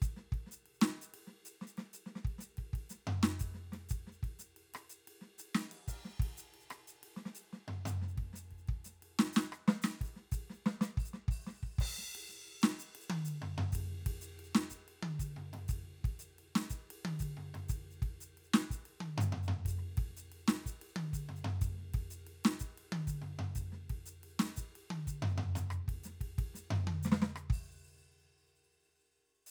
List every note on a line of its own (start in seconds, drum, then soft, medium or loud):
0.02 kick medium
0.02 hi-hat pedal medium
0.02 ride soft
0.16 snare soft
0.32 kick medium
0.32 ride soft
0.46 snare soft
0.51 hi-hat pedal medium
0.66 ride soft
0.74 hi-hat pedal soft
0.81 snare loud
0.81 ride soft
1.01 hi-hat pedal medium
1.14 ride medium
1.23 snare soft
1.23 hi-hat pedal soft
1.45 hi-hat pedal medium
1.45 ride soft
1.61 snare soft
1.67 hi-hat pedal soft
1.77 snare soft
1.77 ride soft
1.93 hi-hat pedal medium
1.93 ride soft
2.06 snare soft
2.15 snare soft
2.25 kick medium
2.25 ride soft
2.38 snare soft
2.38 hi-hat pedal medium
2.57 kick soft
2.57 ride soft
2.73 kick medium
2.73 ride soft
2.89 snare soft
2.89 hi-hat pedal medium
3.07 floor tom loud
3.23 snare loud
3.39 kick soft
3.39 hi-hat pedal medium
3.39 ride medium
3.54 snare soft
3.72 snare soft
3.72 ride soft
3.89 kick medium
3.89 hi-hat pedal medium
3.89 ride soft
4.07 snare soft
4.12 hi-hat pedal soft
4.23 kick medium
4.23 ride soft
4.39 snare soft
4.39 hi-hat pedal medium
4.56 ride soft
4.74 cross-stick medium
4.74 ride medium
4.89 hi-hat pedal medium
5.07 ride medium
5.21 snare soft
5.38 hi-hat pedal medium
5.38 ride medium
5.55 snare loud
5.71 crash soft
5.88 kick soft
5.88 hi-hat pedal medium
5.88 crash soft
6.05 snare soft
6.09 hi-hat pedal soft
6.19 kick medium
6.19 ride medium
6.37 hi-hat pedal medium
6.54 ride soft
6.60 hi-hat pedal soft
6.70 cross-stick medium
6.70 ride soft
6.87 hi-hat pedal medium
7.03 ride medium
7.16 snare soft
7.25 snare soft
7.35 hi-hat pedal medium
7.35 ride soft
7.53 snare soft
7.68 floor tom medium
7.85 floor tom loud
7.85 hi-hat pedal medium
8.02 snare soft
8.08 hi-hat pedal soft
8.18 kick medium
8.18 ride soft
8.33 snare soft
8.33 hi-hat pedal medium
8.51 kick soft
8.51 ride soft
8.58 hi-hat pedal soft
8.68 kick medium
8.68 ride soft
8.84 snare soft
8.84 hi-hat pedal medium
9.02 ride soft
9.19 snare loud
9.33 snare loud
9.33 hi-hat pedal medium
9.52 cross-stick medium
9.68 snare loud
9.82 snare loud
9.82 hi-hat pedal medium
10.01 kick soft
10.01 hi-hat pedal soft
10.01 ride medium
10.16 snare soft
10.31 kick medium
10.31 hi-hat pedal medium
10.31 ride medium
10.50 snare soft
10.50 hi-hat pedal soft
10.66 snare medium
10.81 snare medium
10.81 hi-hat pedal medium
10.97 open hi-hat medium
10.97 kick medium
11.05 hi-hat pedal medium
11.13 snare soft
11.28 open hi-hat medium
11.28 kick medium
11.47 snare soft
11.63 kick soft
11.78 kick medium
11.78 crash loud
11.98 snare soft
12.15 ride medium
12.29 snare soft
12.29 hi-hat pedal soft
12.48 ride soft
12.62 snare loud
12.62 ride soft
12.79 hi-hat pedal medium
12.95 ride medium
13.01 hi-hat pedal soft
13.10 high tom loud
13.25 hi-hat pedal medium
13.25 ride soft
13.42 floor tom medium
13.58 floor tom loud
13.72 kick medium
13.72 hi-hat pedal medium
13.72 ride medium
14.06 kick medium
14.06 ride medium
14.21 hi-hat pedal medium
14.39 ride soft
14.44 hi-hat pedal soft
14.55 snare loud
14.70 kick soft
14.70 hi-hat pedal medium
14.88 ride soft
15.03 high tom loud
15.19 kick soft
15.19 hi-hat pedal medium
15.19 ride soft
15.36 floor tom soft
15.53 floor tom medium
15.53 ride soft
15.68 kick medium
15.68 hi-hat pedal medium
15.68 ride medium
16.04 kick medium
16.04 ride soft
16.19 hi-hat pedal medium
16.38 ride soft
16.55 snare loud
16.55 ride medium
16.70 kick soft
16.70 hi-hat pedal medium
16.90 ride medium
17.05 high tom loud
17.19 kick soft
17.19 hi-hat pedal medium
17.19 ride medium
17.37 floor tom soft
17.54 floor tom medium
17.54 ride soft
17.68 kick medium
17.68 hi-hat pedal medium
17.68 ride medium
17.91 hi-hat pedal soft
18.02 kick medium
18.02 ride soft
18.20 hi-hat pedal medium
18.37 ride soft
18.44 hi-hat pedal soft
18.53 snare loud
18.53 ride medium
18.70 kick soft
18.70 hi-hat pedal medium
18.85 ride soft
19.00 high tom medium
19.18 floor tom loud
19.18 hi-hat pedal medium
19.32 floor tom medium
19.43 hi-hat pedal soft
19.48 floor tom loud
19.65 kick soft
19.65 hi-hat pedal medium
19.65 ride medium
19.79 cross-stick soft
19.97 kick medium
19.97 ride medium
20.17 hi-hat pedal medium
20.32 ride soft
20.39 hi-hat pedal soft
20.48 snare loud
20.48 ride medium
20.66 kick soft
20.66 hi-hat pedal medium
20.81 ride medium
20.88 hi-hat pedal soft
20.96 high tom loud
21.13 kick soft
21.13 hi-hat pedal medium
21.13 ride medium
21.29 floor tom medium
21.36 hi-hat pedal soft
21.44 floor tom loud
21.61 kick medium
21.61 hi-hat pedal medium
21.61 ride soft
21.78 snare soft
21.94 kick medium
21.94 ride medium
22.10 hi-hat pedal medium
22.27 ride soft
22.44 snare loud
22.44 ride medium
22.59 kick soft
22.59 hi-hat pedal medium
22.78 ride soft
22.92 high tom loud
23.07 kick soft
23.07 hi-hat pedal medium
23.07 ride soft
23.22 floor tom medium
23.39 floor tom medium
23.55 kick soft
23.55 hi-hat pedal medium
23.55 ride soft
23.72 snare soft
23.90 kick soft
23.90 ride soft
24.06 hi-hat pedal medium
24.23 ride soft
24.28 hi-hat pedal soft
24.39 snare loud
24.39 ride medium
24.56 kick soft
24.56 hi-hat pedal medium
24.75 hi-hat pedal soft
24.75 ride soft
24.90 high tom loud
25.07 kick soft
25.07 hi-hat pedal medium
25.22 floor tom loud
25.29 hi-hat pedal soft
25.38 floor tom loud
25.55 floor tom medium
25.55 hi-hat pedal medium
25.70 cross-stick medium
25.88 kick medium
25.88 ride medium
26.03 snare soft
26.03 hi-hat pedal medium
26.21 kick soft
26.21 ride medium
26.38 kick medium
26.38 ride medium
26.54 snare soft
26.54 hi-hat pedal medium
26.70 floor tom loud
26.87 high tom loud
27.03 snare medium
27.03 hi-hat pedal medium
27.12 snare loud
27.22 snare medium
27.36 cross-stick medium
27.50 open hi-hat medium
27.50 kick medium
29.46 hi-hat pedal medium